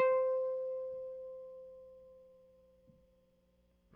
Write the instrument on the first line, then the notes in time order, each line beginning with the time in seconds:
electric guitar
0.00 C5